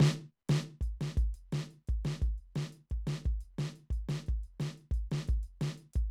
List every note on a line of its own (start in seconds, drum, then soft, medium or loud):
0.02 snare loud
0.49 closed hi-hat medium
0.49 snare loud
0.81 kick soft
0.81 closed hi-hat soft
1.01 snare medium
1.01 closed hi-hat soft
1.17 kick medium
1.17 closed hi-hat soft
1.34 closed hi-hat soft
1.52 snare medium
1.52 closed hi-hat soft
1.70 closed hi-hat soft
1.87 kick soft
1.87 closed hi-hat soft
2.04 snare medium
2.04 closed hi-hat soft
2.21 kick soft
2.21 closed hi-hat soft
2.38 closed hi-hat soft
2.55 snare medium
2.55 closed hi-hat soft
2.72 closed hi-hat soft
2.90 kick soft
2.90 closed hi-hat soft
3.07 snare medium
3.07 closed hi-hat soft
3.24 kick soft
3.24 closed hi-hat soft
3.40 closed hi-hat soft
3.58 snare medium
3.58 closed hi-hat soft
3.75 closed hi-hat soft
3.90 kick soft
3.90 closed hi-hat soft
4.08 snare medium
4.08 closed hi-hat soft
4.26 kick soft
4.26 closed hi-hat soft
4.43 closed hi-hat soft
4.60 snare medium
4.60 closed hi-hat soft
4.77 closed hi-hat soft
4.91 kick soft
4.91 closed hi-hat soft
5.11 snare medium
5.11 closed hi-hat soft
5.27 kick soft
5.27 closed hi-hat soft
5.43 closed hi-hat soft
5.61 snare medium
5.61 closed hi-hat soft
5.77 closed hi-hat soft
5.93 kick soft
5.93 closed hi-hat soft